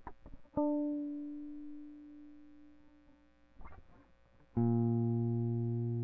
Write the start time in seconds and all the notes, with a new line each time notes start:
0.58 D4
4.59 A#2